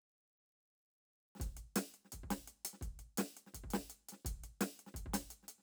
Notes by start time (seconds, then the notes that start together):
1.35 snare
1.38 kick, snare
1.41 snare, closed hi-hat
1.44 snare
1.57 closed hi-hat
1.76 snare, closed hi-hat
1.94 closed hi-hat
2.05 snare
2.12 kick, closed hi-hat
2.23 kick
2.30 snare, closed hi-hat
2.47 closed hi-hat
2.65 closed hi-hat
2.73 snare
2.81 kick, closed hi-hat
2.99 closed hi-hat
3.17 snare, closed hi-hat
3.37 closed hi-hat
3.46 snare
3.54 kick, closed hi-hat
3.63 kick
3.70 snare, closed hi-hat
3.90 closed hi-hat
4.09 snare, closed hi-hat
4.25 kick, closed hi-hat
4.43 closed hi-hat
4.61 snare, closed hi-hat
4.79 closed hi-hat
4.86 snare
4.94 kick, closed hi-hat
5.06 kick
5.13 snare, closed hi-hat
5.30 closed hi-hat
5.43 snare
5.48 closed hi-hat
5.58 snare